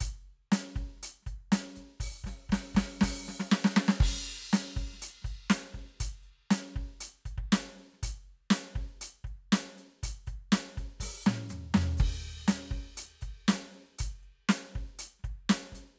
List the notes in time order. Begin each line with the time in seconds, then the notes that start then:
0.01 closed hi-hat, kick
0.52 closed hi-hat, snare
0.76 closed hi-hat, kick
0.97 snare
1.03 closed hi-hat
1.23 closed hi-hat, kick, snare
1.52 closed hi-hat, snare
1.76 closed hi-hat, kick
2.00 open hi-hat, kick
2.24 open hi-hat, kick, snare
2.50 open hi-hat, kick, snare
2.75 open hi-hat, kick, snare
3.01 open hi-hat, kick, snare
3.29 snare
3.40 snare
3.52 snare
3.65 snare
3.77 snare
3.89 snare
4.01 kick, hi-hat pedal, crash
4.53 closed hi-hat, snare
4.77 closed hi-hat, kick
4.94 snare
5.02 closed hi-hat
5.22 closed hi-hat, kick, snare
5.50 closed hi-hat, snare
5.74 kick, closed hi-hat
6.01 closed hi-hat, kick
6.23 closed hi-hat
6.51 closed hi-hat, snare
6.76 kick
7.01 closed hi-hat
7.26 closed hi-hat, kick
7.38 kick
7.52 closed hi-hat, snare
7.80 closed hi-hat
7.94 snare
8.03 closed hi-hat, kick
8.51 closed hi-hat, snare
8.57 cross-stick
8.76 kick, closed hi-hat
9.02 closed hi-hat
9.25 kick, closed hi-hat
9.53 closed hi-hat, snare
9.78 closed hi-hat
10.03 closed hi-hat, kick
10.27 closed hi-hat, kick
10.53 closed hi-hat, snare
10.78 closed hi-hat, kick
11.00 open hi-hat, kick, snare
11.26 snare, hi-hat pedal, mid tom
11.50 floor tom, hi-hat pedal
11.74 snare, floor tom
11.98 kick, hi-hat pedal, crash
12.48 closed hi-hat, snare
12.71 kick, closed hi-hat
12.98 closed hi-hat
13.22 closed hi-hat, kick
13.49 closed hi-hat, snare
13.54 snare
13.72 closed hi-hat
13.99 closed hi-hat, kick
14.23 closed hi-hat
14.49 closed hi-hat, snare
14.74 kick, closed hi-hat
14.99 closed hi-hat
15.20 snare
15.24 kick, closed hi-hat
15.50 closed hi-hat, snare
15.72 closed hi-hat, kick